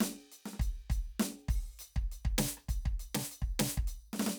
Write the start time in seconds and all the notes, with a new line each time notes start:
0.01 closed hi-hat, snare
0.32 closed hi-hat
0.46 snare
0.54 snare
0.60 closed hi-hat, kick
0.90 closed hi-hat, kick
1.20 closed hi-hat, snare
1.49 kick, percussion
1.79 closed hi-hat, hi-hat pedal
1.97 kick
2.12 closed hi-hat
2.25 kick
2.39 closed hi-hat, snare
2.58 cross-stick
2.69 closed hi-hat, kick
2.86 kick
3.00 closed hi-hat
3.15 snare
3.32 closed hi-hat
3.42 kick
3.60 closed hi-hat, snare
3.78 kick
3.88 closed hi-hat
4.14 snare
4.20 snare
4.27 snare